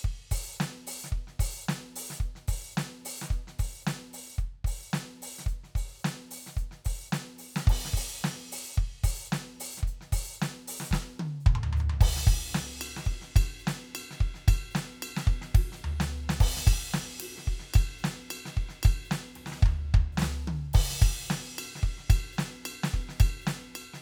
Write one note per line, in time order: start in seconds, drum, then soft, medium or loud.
0.01 kick medium
0.01 hi-hat pedal medium
0.31 open hi-hat loud
0.31 kick medium
0.56 snare loud
0.56 hi-hat pedal medium
0.87 open hi-hat loud
1.04 snare medium
1.04 hi-hat pedal medium
1.12 kick medium
1.27 snare soft
1.39 open hi-hat loud
1.39 kick medium
1.64 hi-hat pedal medium
1.69 snare loud
1.96 open hi-hat loud
2.10 snare medium
2.17 closed hi-hat soft
2.17 kick medium
2.17 hi-hat pedal medium
2.35 snare soft
2.48 open hi-hat loud
2.48 kick medium
2.73 hi-hat pedal medium
2.77 snare loud
3.05 open hi-hat loud
3.21 snare medium
3.21 hi-hat pedal medium
3.30 closed hi-hat soft
3.30 kick medium
3.47 snare medium
3.59 open hi-hat medium
3.59 kick medium
3.82 hi-hat pedal medium
3.87 snare loud
4.13 open hi-hat loud
4.35 closed hi-hat soft
4.35 kick medium
4.35 hi-hat pedal medium
4.64 open hi-hat loud
4.64 kick medium
4.91 snare loud
4.91 hi-hat pedal medium
5.22 open hi-hat loud
5.39 snare medium
5.43 kick medium
5.43 hi-hat pedal medium
5.48 closed hi-hat soft
5.64 snare soft
5.75 open hi-hat medium
5.75 kick medium
6.00 hi-hat pedal soft
6.04 snare loud
6.31 open hi-hat loud
6.46 snare medium
6.54 closed hi-hat medium
6.54 kick medium
6.54 hi-hat pedal medium
6.71 snare soft
6.85 open hi-hat loud
6.85 kick medium
7.08 hi-hat pedal medium
7.12 snare loud
7.38 open hi-hat medium
7.56 snare loud
7.61 hi-hat pedal medium
7.67 kick loud
7.67 crash loud
7.85 snare medium
7.93 open hi-hat loud
7.93 kick medium
8.20 snare loud
8.20 hi-hat pedal medium
8.52 open hi-hat loud
8.75 kick medium
8.75 hi-hat pedal medium
9.04 open hi-hat loud
9.04 kick loud
9.28 hi-hat pedal soft
9.32 snare loud
9.60 open hi-hat loud
9.77 snare medium
9.77 hi-hat pedal medium
9.83 kick medium
9.87 closed hi-hat soft
10.01 snare soft
10.12 open hi-hat loud
10.12 kick medium
10.35 hi-hat pedal soft
10.42 snare loud
10.68 open hi-hat loud
10.80 snare medium
10.87 kick medium
10.87 snare medium
10.87 hi-hat pedal soft
10.93 snare loud
11.20 high tom loud
11.40 hi-hat pedal soft
11.46 kick loud
11.46 mid tom loud
11.55 mid tom medium
11.63 floor tom loud
11.73 floor tom loud
11.77 floor tom loud
11.77 hi-hat pedal soft
11.90 floor tom loud
12.01 kick loud
12.01 crash loud
12.16 snare medium
12.27 kick loud
12.27 ride medium
12.27 floor tom soft
12.49 hi-hat pedal medium
12.55 snare loud
12.81 ride bell loud
12.96 snare medium
13.06 kick medium
13.06 ride soft
13.22 snare soft
13.36 kick loud
13.36 ride bell loud
13.59 hi-hat pedal soft
13.67 snare loud
13.95 ride bell loud
14.11 snare medium
14.20 kick medium
14.34 snare soft
14.48 kick loud
14.48 ride bell loud
14.71 hi-hat pedal soft
14.75 snare loud
15.02 ride bell loud
15.17 snare loud
15.27 kick loud
15.41 snare medium
15.55 kick loud
15.55 ride loud
15.72 snare medium
15.76 hi-hat pedal soft
15.84 floor tom loud
16.00 snare loud
16.29 snare loud
16.40 kick loud
16.40 crash loud
16.57 snare medium
16.67 kick loud
16.67 ride bell loud
16.90 hi-hat pedal soft
16.94 snare loud
17.20 ride loud
17.37 snare medium
17.47 kick medium
17.60 snare soft
17.74 kick loud
17.74 ride bell loud
17.98 hi-hat pedal soft
18.04 snare loud
18.31 ride bell loud
18.46 snare medium
18.57 kick medium
18.69 snare medium
18.83 kick loud
18.83 ride bell loud
19.05 hi-hat pedal soft
19.11 snare loud
19.36 ride medium
19.36 floor tom soft
19.46 snare medium
19.51 snare medium
19.56 snare medium
19.61 kick loud
19.61 snare soft
19.66 snare soft
19.66 floor tom loud
19.94 kick loud
19.94 floor tom loud
20.12 hi-hat pedal soft
20.17 snare loud
20.22 snare loud
20.47 high tom loud
20.73 kick loud
20.73 crash loud
20.91 snare soft
21.02 kick loud
21.02 ride bell loud
21.26 snare loud
21.26 hi-hat pedal soft
21.58 ride bell loud
21.75 snare medium
21.83 kick medium
21.98 snare soft
22.10 kick loud
22.10 ride bell loud
22.32 hi-hat pedal soft
22.38 snare loud
22.65 ride bell loud
22.84 snare loud
22.94 kick medium
23.09 snare medium
23.20 kick loud
23.20 ride bell loud
23.41 hi-hat pedal soft
23.47 snare loud
23.75 ride bell loud
23.94 snare medium